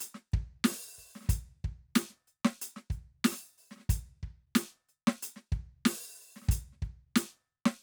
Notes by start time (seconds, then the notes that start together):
0.01 closed hi-hat
0.15 snare
0.32 kick, closed hi-hat
0.65 open hi-hat, snare
0.72 snare
0.98 open hi-hat, kick
1.16 snare
1.21 snare
1.24 snare, hi-hat pedal
1.27 closed hi-hat, kick, snare
1.65 kick, closed hi-hat
1.96 closed hi-hat, snare
2.10 snare
2.28 closed hi-hat
2.45 snare
2.62 closed hi-hat
2.77 snare
2.90 closed hi-hat, kick
3.25 open hi-hat, snare
3.32 snare
3.58 open hi-hat
3.71 snare
3.76 snare
3.80 snare
3.90 closed hi-hat, kick
4.23 kick, closed hi-hat
4.56 closed hi-hat, snare
4.89 closed hi-hat
5.08 snare
5.23 closed hi-hat
5.37 snare
5.52 kick, closed hi-hat
5.86 open hi-hat, snare
6.21 open hi-hat
6.36 snare
6.42 snare, hi-hat pedal
6.45 snare
6.48 kick, snare
6.49 closed hi-hat, snare
6.73 snare
6.82 kick, closed hi-hat
7.16 closed hi-hat, snare
7.66 snare